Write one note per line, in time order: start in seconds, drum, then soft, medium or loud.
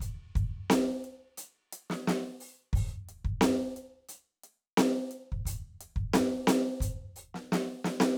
0.01 closed hi-hat medium
0.01 kick medium
0.36 kick loud
0.36 closed hi-hat soft
0.70 closed hi-hat medium
0.70 snare loud
1.05 closed hi-hat soft
1.38 closed hi-hat loud
1.73 closed hi-hat loud
1.90 snare medium
2.08 snare loud
2.41 open hi-hat medium
2.73 open hi-hat medium
2.73 kick loud
3.09 closed hi-hat medium
3.25 kick medium
3.42 closed hi-hat medium
3.42 snare loud
3.77 closed hi-hat medium
4.09 closed hi-hat loud
4.44 closed hi-hat medium
4.78 snare loud
4.78 closed hi-hat medium
5.12 closed hi-hat medium
5.32 kick medium
5.46 closed hi-hat loud
5.46 kick medium
5.81 closed hi-hat medium
5.96 kick medium
6.14 closed hi-hat medium
6.14 snare loud
6.48 closed hi-hat loud
6.48 snare loud
6.81 closed hi-hat loud
6.81 kick medium
7.16 open hi-hat medium
7.35 snare medium
7.53 snare loud
7.85 snare loud
8.01 snare loud